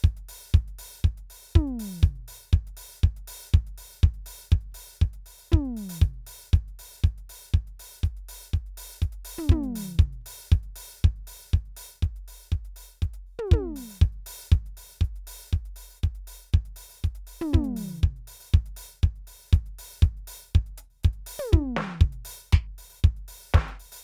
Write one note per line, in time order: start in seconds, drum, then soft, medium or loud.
0.01 kick loud
0.01 hi-hat pedal soft
0.05 closed hi-hat soft
0.17 closed hi-hat medium
0.29 open hi-hat loud
0.44 open hi-hat soft
0.50 hi-hat pedal soft
0.55 kick loud
0.55 closed hi-hat soft
0.68 closed hi-hat soft
0.79 open hi-hat loud
0.94 open hi-hat medium
0.99 hi-hat pedal soft
1.05 kick loud
1.05 closed hi-hat soft
1.18 closed hi-hat soft
1.31 open hi-hat medium
1.43 open hi-hat medium
1.53 kick loud
1.53 floor tom loud
1.53 hi-hat pedal soft
1.68 closed hi-hat soft
1.80 open hi-hat loud
1.94 open hi-hat soft
2.00 kick loud
2.00 hi-hat pedal soft
2.04 closed hi-hat soft
2.16 closed hi-hat soft
2.29 open hi-hat loud
2.43 open hi-hat soft
2.50 kick loud
2.50 closed hi-hat soft
2.50 hi-hat pedal soft
2.67 closed hi-hat soft
2.77 open hi-hat loud
2.93 open hi-hat soft
2.97 hi-hat pedal soft
3.04 kick loud
3.04 closed hi-hat soft
3.17 closed hi-hat medium
3.28 open hi-hat loud
3.43 hi-hat pedal soft
3.43 open hi-hat medium
3.54 kick loud
3.54 closed hi-hat medium
3.67 closed hi-hat soft
3.78 open hi-hat medium
3.92 open hi-hat soft
3.97 hi-hat pedal soft
4.03 kick loud
4.03 closed hi-hat soft
4.14 closed hi-hat soft
4.23 open hi-hat loud
4.23 kick soft
4.39 open hi-hat soft
4.45 hi-hat pedal soft
4.51 kick loud
4.51 closed hi-hat medium
4.61 closed hi-hat soft
4.73 open hi-hat loud
4.73 kick soft
4.87 open hi-hat soft
4.96 hi-hat pedal soft
5.02 kick loud
5.02 closed hi-hat soft
5.14 closed hi-hat soft
5.26 open hi-hat medium
5.39 open hi-hat medium
5.49 floor tom loud
5.49 hi-hat pedal soft
5.54 kick loud
5.65 closed hi-hat soft
5.74 open hi-hat medium
5.74 kick soft
5.90 open hi-hat loud
5.97 hi-hat pedal soft
6.02 kick loud
6.02 closed hi-hat soft
6.14 closed hi-hat soft
6.27 open hi-hat loud
6.44 hi-hat pedal soft
6.44 open hi-hat soft
6.54 kick loud
6.54 closed hi-hat soft
6.69 closed hi-hat soft
6.80 open hi-hat loud
6.94 open hi-hat soft
6.99 hi-hat pedal soft
7.04 kick loud
7.04 closed hi-hat soft
7.18 closed hi-hat soft
7.30 open hi-hat loud
7.43 open hi-hat soft
7.48 hi-hat pedal soft
7.54 kick loud
7.54 closed hi-hat soft
7.68 closed hi-hat soft
7.80 open hi-hat loud
7.94 hi-hat pedal soft
7.94 open hi-hat soft
8.04 closed hi-hat medium
8.04 kick medium
8.17 closed hi-hat soft
8.29 open hi-hat loud
8.43 open hi-hat soft
8.47 hi-hat pedal soft
8.54 kick medium
8.54 closed hi-hat soft
8.67 closed hi-hat soft
8.78 open hi-hat loud
8.92 open hi-hat soft
8.97 hi-hat pedal soft
9.03 kick medium
9.03 closed hi-hat medium
9.13 closed hi-hat medium
9.25 open hi-hat loud
9.38 floor tom loud
9.45 hi-hat pedal soft
9.50 kick loud
9.50 floor tom loud
9.64 closed hi-hat soft
9.76 open hi-hat loud
9.89 open hi-hat soft
9.96 kick loud
9.96 hi-hat pedal soft
10.02 closed hi-hat soft
10.13 closed hi-hat soft
10.22 kick soft
10.26 open hi-hat loud
10.40 open hi-hat soft
10.48 hi-hat pedal soft
10.52 closed hi-hat soft
10.52 kick loud
10.64 closed hi-hat soft
10.76 open hi-hat loud
10.90 open hi-hat soft
11.00 hi-hat pedal soft
11.05 closed hi-hat soft
11.05 kick loud
11.16 closed hi-hat soft
11.28 open hi-hat loud
11.43 open hi-hat soft
11.51 kick loud
11.51 hi-hat pedal soft
11.66 closed hi-hat soft
11.77 open hi-hat loud
11.94 open hi-hat soft
11.98 hi-hat pedal soft
12.03 closed hi-hat medium
12.03 kick medium
12.17 closed hi-hat soft
12.28 open hi-hat medium
12.43 open hi-hat soft
12.47 hi-hat pedal soft
12.53 kick medium
12.53 closed hi-hat soft
12.65 closed hi-hat soft
12.77 open hi-hat medium
12.91 open hi-hat soft
12.98 hi-hat pedal soft
13.03 kick medium
13.03 closed hi-hat soft
13.14 closed hi-hat medium
13.27 open hi-hat soft
13.39 mid tom loud
13.47 hi-hat pedal soft
13.52 kick loud
13.52 mid tom loud
13.77 open hi-hat medium
13.90 open hi-hat medium
13.97 hi-hat pedal soft
14.02 kick loud
14.02 closed hi-hat soft
14.13 closed hi-hat soft
14.27 open hi-hat loud
14.41 open hi-hat soft
14.47 hi-hat pedal soft
14.52 closed hi-hat soft
14.52 kick loud
14.67 closed hi-hat soft
14.78 open hi-hat medium
14.91 open hi-hat soft
14.96 hi-hat pedal soft
15.02 closed hi-hat soft
15.02 kick loud
15.16 closed hi-hat soft
15.28 open hi-hat loud
15.42 open hi-hat soft
15.49 hi-hat pedal soft
15.53 kick medium
15.53 closed hi-hat soft
15.66 closed hi-hat soft
15.77 open hi-hat medium
15.91 open hi-hat medium
15.98 hi-hat pedal soft
16.04 closed hi-hat medium
16.04 kick medium
16.16 closed hi-hat soft
16.28 open hi-hat medium
16.43 open hi-hat soft
16.49 hi-hat pedal soft
16.53 kick loud
16.53 closed hi-hat soft
16.66 closed hi-hat soft
16.77 open hi-hat medium
16.90 open hi-hat medium
16.99 hi-hat pedal soft
17.05 kick medium
17.05 closed hi-hat medium
17.16 closed hi-hat medium
17.27 open hi-hat medium
17.41 floor tom loud
17.51 kick loud
17.51 floor tom loud
17.51 hi-hat pedal soft
17.65 closed hi-hat medium
17.77 open hi-hat loud
17.88 open hi-hat medium
17.99 hi-hat pedal soft
18.03 kick loud
18.03 closed hi-hat soft
18.17 closed hi-hat soft
18.28 open hi-hat medium
18.41 open hi-hat medium
18.49 hi-hat pedal soft
18.54 kick loud
18.54 closed hi-hat soft
18.66 closed hi-hat medium
18.77 open hi-hat loud
18.92 open hi-hat soft
18.98 hi-hat pedal soft
19.03 kick loud
19.03 closed hi-hat medium
19.16 closed hi-hat soft
19.28 open hi-hat medium
19.44 open hi-hat soft
19.49 hi-hat pedal soft
19.53 kick loud
19.53 closed hi-hat medium
19.67 closed hi-hat soft
19.79 open hi-hat loud
19.93 open hi-hat soft
19.99 kick loud
19.99 hi-hat pedal soft
20.04 closed hi-hat soft
20.18 closed hi-hat soft
20.28 open hi-hat loud
20.42 open hi-hat soft
20.51 hi-hat pedal soft
20.55 kick loud
20.55 closed hi-hat soft
20.67 closed hi-hat soft
20.78 open hi-hat loud
20.91 open hi-hat soft
21.00 closed hi-hat medium
21.00 hi-hat pedal soft
21.05 kick loud
21.14 closed hi-hat soft
21.27 open hi-hat loud
21.39 high tom loud
21.48 hi-hat pedal soft
21.52 kick loud
21.52 floor tom loud
21.77 snare loud
21.99 kick loud
21.99 hi-hat pedal soft
22.04 closed hi-hat soft
22.13 closed hi-hat soft
22.26 open hi-hat loud
22.41 open hi-hat soft
22.50 kick loud
22.50 snare loud
22.50 hi-hat pedal soft
22.79 open hi-hat medium
22.91 open hi-hat medium
23.00 hi-hat pedal soft
23.05 kick loud
23.05 closed hi-hat soft
23.17 closed hi-hat soft
23.29 open hi-hat medium
23.42 open hi-hat soft
23.52 kick loud
23.52 snare loud
23.52 hi-hat pedal soft
23.69 closed hi-hat soft
23.80 open hi-hat medium
23.93 open hi-hat loud
23.99 hi-hat pedal soft